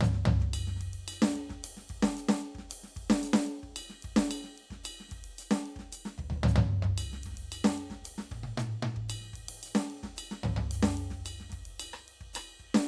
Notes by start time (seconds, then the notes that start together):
0.01 hi-hat pedal, floor tom
0.13 snare
0.26 floor tom
0.40 kick, snare
0.54 hi-hat pedal, ride bell
0.67 snare
0.76 snare
0.81 kick, ride
0.86 kick
0.94 ride
1.08 hi-hat pedal, ride bell
1.22 snare
1.29 snare
1.36 ride
1.50 kick, snare
1.56 kick
1.64 hi-hat pedal, ride
1.77 snare
1.90 kick, ride
1.97 kick
2.03 snare
2.17 hi-hat pedal, ride
2.29 snare
2.42 ride
2.55 kick, snare
2.70 hi-hat pedal, ride
2.84 snare
2.97 kick, ride
3.03 kick
3.10 snare
3.23 hi-hat pedal, ride bell
3.34 snare
3.47 ride
3.63 kick
3.76 hi-hat pedal, ride bell
3.90 snare
4.03 kick, ride
4.10 kick
4.17 snare
4.30 hi-hat pedal, ride bell
4.44 snare
4.58 ride
4.71 kick, snare
4.84 hi-hat pedal, ride bell
5.00 snare
5.09 kick, snare, ride
5.18 kick
5.24 ride
5.39 hi-hat pedal, ride bell
5.51 snare
5.66 ride
5.76 kick, snare
5.92 hi-hat pedal, ride bell
6.05 snare
6.18 kick, floor tom
6.30 floor tom
6.44 floor tom
6.48 hi-hat pedal
6.56 floor tom
6.69 floor tom
6.83 kick, floor tom
6.98 hi-hat pedal, ride bell
7.13 snare
7.24 kick, snare, ride
7.32 kick, snare
7.37 snare, ride
7.52 hi-hat pedal, ride bell
7.65 snare
7.78 ride
7.90 kick, snare
8.05 hi-hat pedal, ride
8.18 snare
8.31 kick, mid tom
8.44 mid tom
8.58 hi-hat pedal, mid tom
8.83 mid tom
8.96 kick
9.09 hi-hat pedal, ride bell
9.20 snare
9.26 snare
9.33 kick, ride
9.49 ride
9.63 hi-hat pedal, ride bell
9.75 snare
9.90 ride
10.03 kick, snare
10.17 hi-hat pedal, ride bell
10.31 snare
10.44 kick, floor tom
10.51 kick
10.57 floor tom
10.71 hi-hat pedal, ride
10.83 snare
10.97 ride
11.11 kick, snare
11.25 hi-hat pedal, ride bell
11.40 snare
11.50 kick, snare, ride
11.55 kick, snare
11.61 snare
11.65 snare, ride
11.69 snare
11.80 hi-hat pedal, ride bell
11.94 cross-stick
11.99 cross-stick
12.08 ride
12.21 kick
12.34 cross-stick, hi-hat pedal, ride bell
12.60 kick, ride
12.75 snare